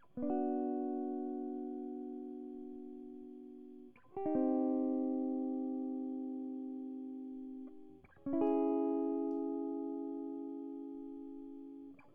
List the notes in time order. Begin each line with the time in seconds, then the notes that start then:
0.17 B3
0.23 D4
0.30 F#4
4.17 G4
4.26 D#4
4.35 C4
8.26 C#4
8.33 E4
8.41 G#4